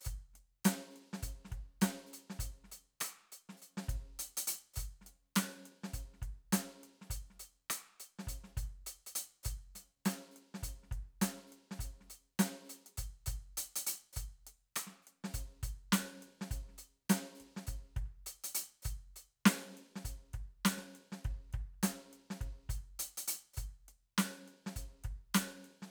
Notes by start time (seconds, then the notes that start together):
0.01 closed hi-hat, hi-hat pedal
0.06 kick
0.33 snare, closed hi-hat
0.65 closed hi-hat, snare
0.90 hi-hat pedal
0.96 closed hi-hat
1.13 snare
1.23 closed hi-hat, kick
1.45 snare
1.52 kick, closed hi-hat
1.81 closed hi-hat, snare
2.06 hi-hat pedal
2.13 closed hi-hat
2.30 snare
2.39 closed hi-hat, kick
2.44 kick
2.64 snare
2.68 closed hi-hat, snare
2.72 snare
3.00 closed hi-hat, cross-stick
3.05 closed hi-hat
3.32 closed hi-hat
3.49 snare
3.57 hi-hat pedal
3.62 closed hi-hat
3.77 snare
3.88 kick, closed hi-hat
3.94 kick
3.97 kick
4.19 closed hi-hat
4.37 closed hi-hat
4.47 closed hi-hat
4.74 closed hi-hat, kick, hi-hat pedal
4.79 closed hi-hat
5.01 snare
5.06 closed hi-hat
5.36 closed hi-hat, snare
5.65 closed hi-hat
5.83 snare
5.93 closed hi-hat, kick
6.13 snare
6.22 kick, closed hi-hat
6.52 closed hi-hat, snare
6.83 closed hi-hat
7.01 snare
7.10 closed hi-hat, kick
7.30 snare
7.35 snare
7.38 closed hi-hat, snare
7.70 closed hi-hat, cross-stick
8.00 closed hi-hat
8.19 snare
8.27 closed hi-hat, kick
8.44 snare
8.57 closed hi-hat, kick
8.63 kick
8.65 kick
8.86 closed hi-hat
9.06 closed hi-hat
9.15 closed hi-hat
9.43 closed hi-hat, kick, hi-hat pedal
9.75 closed hi-hat, snare
10.05 closed hi-hat, snare
10.09 closed hi-hat
10.31 hi-hat pedal
10.36 closed hi-hat
10.54 snare
10.62 closed hi-hat, kick
10.83 snare
10.91 kick, closed hi-hat
11.21 closed hi-hat, snare
11.37 snare
11.47 hi-hat pedal
11.52 closed hi-hat
11.71 snare
11.79 closed hi-hat, kick
12.00 snare
12.07 closed hi-hat, snare
12.39 closed hi-hat, snare
12.62 snare, hi-hat pedal
12.69 closed hi-hat
12.86 open hi-hat
12.97 closed hi-hat, kick
13.26 closed hi-hat, kick
13.36 kick
13.57 closed hi-hat
13.76 closed hi-hat
13.87 closed hi-hat
14.13 closed hi-hat, kick, hi-hat pedal
14.47 closed hi-hat
14.76 closed hi-hat, cross-stick
14.87 snare
15.02 hi-hat pedal
15.07 closed hi-hat
15.24 snare
15.34 closed hi-hat, kick
15.63 closed hi-hat, kick
15.92 closed hi-hat, snare
16.22 closed hi-hat
16.41 snare
16.51 closed hi-hat, kick
16.56 kick
16.68 snare
16.72 snare
16.78 closed hi-hat
17.09 closed hi-hat, snare
17.35 hi-hat pedal
17.40 kick, closed hi-hat
17.56 snare
17.67 closed hi-hat, kick
17.84 snare
17.96 kick, closed hi-hat
18.05 kick
18.26 closed hi-hat
18.44 closed hi-hat
18.55 closed hi-hat
18.82 closed hi-hat, kick, hi-hat pedal
19.16 closed hi-hat
19.45 closed hi-hat, snare
19.77 closed hi-hat
19.96 snare
20.05 closed hi-hat, kick
20.33 kick, closed hi-hat
20.65 closed hi-hat, snare
20.77 snare
20.95 closed hi-hat
21.12 snare
21.25 kick, closed hi-hat
21.30 kick
21.34 kick
21.49 snare, closed hi-hat
21.54 kick
21.60 kick
21.74 kick
21.83 closed hi-hat, snare
22.13 closed hi-hat
22.30 snare
22.41 kick, closed hi-hat
22.46 kick
22.69 closed hi-hat, kick
22.78 kick
22.99 closed hi-hat
23.17 closed hi-hat
23.28 closed hi-hat
23.53 closed hi-hat, kick, hi-hat pedal
23.88 closed hi-hat
24.18 closed hi-hat, snare
24.48 closed hi-hat
24.66 snare
24.76 closed hi-hat, kick
25.04 kick, closed hi-hat
25.34 closed hi-hat, snare
25.64 closed hi-hat
25.82 snare